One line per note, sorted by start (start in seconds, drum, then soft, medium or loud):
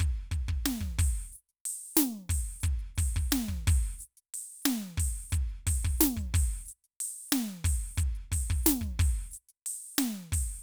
0.00 closed hi-hat medium
0.00 kick medium
0.31 closed hi-hat medium
0.31 kick medium
0.46 kick medium
0.46 closed hi-hat soft
0.65 closed hi-hat medium
0.65 snare loud
0.80 kick soft
0.98 open hi-hat loud
0.98 kick medium
1.32 hi-hat pedal medium
1.49 closed hi-hat soft
1.65 open hi-hat loud
1.95 closed hi-hat medium
1.95 snare loud
1.95 hi-hat pedal medium
2.29 open hi-hat loud
2.29 kick medium
2.60 closed hi-hat medium
2.60 kick medium
2.60 hi-hat pedal medium
2.79 closed hi-hat soft
2.95 open hi-hat loud
2.95 kick medium
2.95 hi-hat pedal soft
3.16 kick medium
3.31 closed hi-hat medium
3.31 snare loud
3.31 hi-hat pedal medium
3.48 kick soft
3.48 closed hi-hat soft
3.67 open hi-hat loud
3.67 kick medium
3.99 closed hi-hat medium
3.99 hi-hat pedal medium
4.17 closed hi-hat soft
4.34 open hi-hat loud
4.62 closed hi-hat medium
4.62 snare loud
4.62 hi-hat pedal medium
4.82 closed hi-hat soft
4.97 open hi-hat loud
4.97 kick medium
5.30 closed hi-hat medium
5.30 kick medium
5.30 hi-hat pedal medium
5.49 closed hi-hat soft
5.67 open hi-hat loud
5.67 kick medium
5.84 kick medium
5.98 closed hi-hat medium
5.98 snare loud
5.98 hi-hat pedal medium
6.16 closed hi-hat soft
6.16 kick soft
6.34 open hi-hat loud
6.34 kick medium
6.65 closed hi-hat medium
6.65 hi-hat pedal medium
6.84 closed hi-hat soft
7.00 open hi-hat loud
7.29 closed hi-hat medium
7.29 snare loud
7.29 hi-hat pedal medium
7.48 closed hi-hat soft
7.64 open hi-hat loud
7.64 kick medium
7.64 hi-hat pedal soft
7.95 closed hi-hat loud
7.95 kick medium
7.95 hi-hat pedal medium
8.15 closed hi-hat soft
8.32 open hi-hat loud
8.32 kick medium
8.50 kick medium
8.63 closed hi-hat loud
8.63 snare loud
8.63 hi-hat pedal medium
8.81 kick soft
8.81 closed hi-hat soft
8.99 open hi-hat medium
8.99 kick medium
9.31 closed hi-hat medium
9.31 hi-hat pedal medium
9.48 closed hi-hat soft
9.66 open hi-hat loud
9.95 closed hi-hat loud
9.95 snare loud
9.95 hi-hat pedal medium
10.16 closed hi-hat soft
10.32 open hi-hat loud
10.32 kick medium